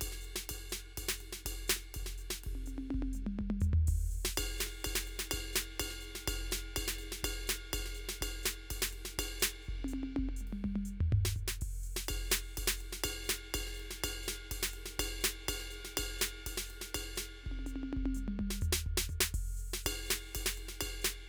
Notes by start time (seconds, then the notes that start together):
0.01 kick, ride bell
0.08 kick
0.12 snare
0.21 hi-hat pedal, ride
0.36 snare
0.49 kick, ride bell
0.57 kick
0.69 snare, hi-hat pedal
0.97 kick, ride bell
1.04 kick
1.08 snare
1.18 hi-hat pedal, ride
1.32 snare
1.46 kick, ride bell
1.68 snare, hi-hat pedal
1.76 snare
1.94 kick, ride bell
2.02 kick, snare
2.18 hi-hat pedal, ride
2.30 snare
2.44 kick, ride
2.53 kick, high tom
2.66 hi-hat pedal, high tom
2.78 high tom
2.91 kick, high tom
3.01 kick, high tom
3.13 hi-hat pedal, mid tom
3.27 mid tom
3.39 kick, mid tom
3.47 kick, mid tom
3.60 floor tom, hi-hat pedal
3.73 floor tom
3.87 kick, crash
3.95 kick
4.00 kick
4.11 hi-hat pedal
4.25 snare
4.37 kick, ride bell
4.58 snare, hi-hat pedal
4.66 snare
4.80 hi-hat pedal
4.84 kick, ride bell
4.95 snare
5.05 hi-hat pedal, ride
5.19 snare
5.31 kick, ride bell
5.40 kick
5.53 snare, hi-hat pedal
5.75 hi-hat pedal
5.80 kick, ride bell
5.86 kick, snare
6.01 hi-hat pedal, ride
6.15 snare
6.28 kick, ride bell
6.35 kick
6.51 snare, hi-hat pedal
6.76 kick, ride bell
6.83 kick
6.88 snare
6.99 hi-hat pedal, ride
7.12 snare
7.24 kick, ride bell
7.30 kick
7.47 snare, hi-hat pedal
7.73 kick, ride bell
7.80 kick
7.85 snare
7.94 hi-hat pedal, ride
8.09 snare
8.17 hi-hat pedal
8.21 kick, ride bell
8.27 kick
8.43 snare, hi-hat pedal
8.70 kick, ride bell
8.77 kick
8.82 snare
8.90 hi-hat pedal, ride
9.05 snare
9.18 kick, ride bell
9.24 kick
9.40 snare, hi-hat pedal
9.62 hi-hat pedal
9.68 kick
9.74 kick
9.79 high tom
9.84 hi-hat pedal, high tom
9.93 high tom
10.03 high tom
10.16 kick, high tom
10.25 kick, high tom
10.36 hi-hat pedal
10.41 mid tom
10.47 ride
10.53 mid tom
10.64 kick, mid tom
10.71 kick
10.76 mid tom
10.85 hi-hat pedal
11.01 floor tom
11.12 kick, floor tom
11.19 kick
11.25 snare
11.35 kick, hi-hat pedal
11.48 snare
11.61 kick, crash
11.74 kick
11.83 hi-hat pedal
11.96 snare
12.08 kick, ride bell
12.17 kick
12.30 snare, hi-hat pedal
12.57 kick, ride bell
12.67 snare
12.77 hi-hat pedal, ride
12.92 snare
13.04 kick, ride bell
13.11 kick
13.24 hi-hat pedal
13.29 snare
13.54 kick, ride bell
13.61 kick
13.67 snare
13.74 hi-hat pedal
13.80 ride
13.91 snare
14.04 kick, ride bell
14.23 hi-hat pedal
14.28 snare
14.51 kick, ride bell
14.57 kick
14.63 snare
14.71 hi-hat pedal, ride
14.86 snare
14.94 hi-hat pedal
14.99 kick, ride bell
15.05 kick
15.21 snare, hi-hat pedal
15.43 hi-hat pedal
15.48 kick, ride bell
15.55 kick
15.60 snare
15.70 hi-hat pedal, ride
15.85 snare
15.97 kick, ride bell
16.05 kick
16.19 snare, hi-hat pedal
16.46 kick, ride bell
16.52 kick
16.57 snare
16.66 hi-hat pedal
16.70 ride
16.81 snare
16.94 kick, ride bell
17.01 kick
17.16 snare, hi-hat pedal
17.44 kick, high tom
17.51 kick, high tom
17.59 high tom
17.66 hi-hat pedal, high tom
17.76 high tom
17.83 high tom
17.93 kick, high tom
18.03 kick, high tom
18.15 hi-hat pedal, mid tom
18.28 mid tom
18.39 kick, mid tom
18.47 kick, snare
18.61 floor tom, hi-hat pedal
18.72 snare
18.86 kick, floor tom
18.97 snare
19.09 kick, floor tom, hi-hat pedal
19.20 snare
19.34 kick, crash
19.46 kick
19.57 hi-hat pedal
19.73 snare
19.86 kick, ride bell
19.92 kick
20.06 hi-hat pedal
20.10 snare
20.35 kick, ride bell
20.41 kick
20.46 snare
20.54 hi-hat pedal, ride
20.68 snare
20.81 kick, ride bell
21.02 snare, hi-hat pedal